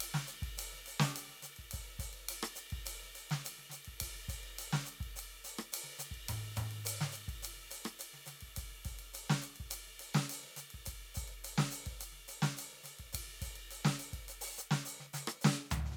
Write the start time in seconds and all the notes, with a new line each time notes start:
0.01 hi-hat pedal, ride
0.14 snare
0.28 hi-hat pedal, ride
0.42 kick, ride
0.58 hi-hat pedal, ride
0.73 snare
0.86 hi-hat pedal, ride
1.00 snare, ride
1.16 hi-hat pedal, ride
1.28 snare
1.42 snare, hi-hat pedal, ride
1.57 kick, ride
1.71 kick, hi-hat pedal, ride
1.99 kick, hi-hat pedal, ride
2.13 ride
2.29 hi-hat pedal, ride
2.43 cross-stick
2.56 hi-hat pedal, ride
2.71 kick, ride
2.86 hi-hat pedal, ride
3.02 snare
3.15 hi-hat pedal, ride
3.30 snare, ride
3.45 hi-hat pedal, ride
3.58 snare
3.70 snare, hi-hat pedal, ride
3.85 kick, ride
4.00 kick, hi-hat pedal, ride
4.15 snare
4.29 kick, hi-hat pedal, ride
4.44 ride
4.59 hi-hat pedal, ride
4.73 snare
4.86 hi-hat pedal, ride
5.01 kick, ride
5.16 hi-hat pedal, ride
5.45 hi-hat pedal, ride
5.59 cross-stick, ride
5.73 hi-hat pedal, ride
5.84 snare
5.99 snare, hi-hat pedal, ride
6.12 kick, ride
6.29 closed hi-hat, hi-hat pedal, high tom, ride
6.56 closed hi-hat, hi-hat pedal, high tom, ride
6.71 ride
6.85 hi-hat pedal, ride
7.01 snare
7.12 hi-hat pedal, ride
7.28 kick, ride
7.43 hi-hat pedal, ride
7.56 snare
7.71 hi-hat pedal, ride
7.85 cross-stick, ride
7.99 hi-hat pedal, ride
8.14 snare
8.26 snare, hi-hat pedal, ride
8.41 kick, ride
8.56 kick, hi-hat pedal, ride
8.70 snare
8.85 kick, hi-hat pedal, ride
8.99 ride
9.14 hi-hat pedal, ride
9.30 snare
9.42 hi-hat pedal, ride
9.56 ride
9.60 kick
9.71 hi-hat pedal, ride
9.87 snare
10.00 hi-hat pedal, ride
10.15 snare, ride
10.30 hi-hat pedal, ride
10.43 snare
10.57 snare, hi-hat pedal, ride
10.71 kick, ride
10.86 kick, hi-hat pedal, ride
11.15 kick, hi-hat pedal, ride
11.28 ride
11.44 hi-hat pedal, ride
11.58 snare
11.71 hi-hat pedal, ride
11.86 kick, ride
12.01 hi-hat pedal, ride
12.12 snare
12.28 hi-hat pedal, ride
12.42 snare, ride
12.57 hi-hat pedal, ride
12.73 snare
12.84 snare, hi-hat pedal, ride
12.99 kick, ride
13.13 kick, hi-hat pedal, ride
13.27 snare
13.42 kick, hi-hat pedal, ride
13.56 ride
13.71 hi-hat pedal, ride
13.85 snare
13.99 hi-hat pedal, ride
14.13 kick, ride
14.29 hi-hat pedal, ride
14.41 open hi-hat
14.58 hi-hat pedal
14.71 snare
14.85 hi-hat pedal
15.00 snare
15.14 snare, hi-hat pedal
15.28 cross-stick
15.42 snare, hi-hat pedal
15.71 floor tom, hi-hat pedal
15.86 snare
15.92 snare